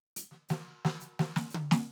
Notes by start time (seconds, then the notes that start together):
0.17 closed hi-hat
0.32 snare
0.49 snare, hi-hat pedal
0.68 snare
0.85 snare
1.01 snare, hi-hat pedal
1.20 snare
1.37 snare
1.51 hi-hat pedal
1.55 high tom
1.72 snare